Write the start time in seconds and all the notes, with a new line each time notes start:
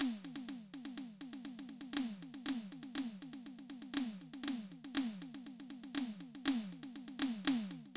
0.00 snare
0.24 snare
0.36 snare
0.49 snare
0.74 snare
0.85 snare
0.97 snare
1.21 snare
1.33 snare
1.45 snare
1.59 snare
1.69 snare
1.81 snare
1.93 snare
1.97 snare
2.22 snare
2.34 snare
2.46 snare
2.48 snare
2.72 snare
2.83 snare
2.95 snare
2.98 snare
3.22 snare
3.33 snare
3.46 snare
3.59 snare
3.70 snare
3.82 snare
3.94 snare
3.97 snare
4.21 snare
4.33 snare
4.48 snare
4.71 snare
4.84 snare
4.95 snare
4.97 snare
5.22 snare
5.34 snare
5.46 snare
5.60 snare
5.70 snare
5.83 snare
5.95 snare
5.97 snare
6.20 snare
6.35 snare
6.45 snare
6.48 snare
6.72 snare
6.83 snare
6.96 snare
7.08 snare
7.19 snare
7.22 snare
7.45 snare
7.47 snare
7.71 snare
7.85 snare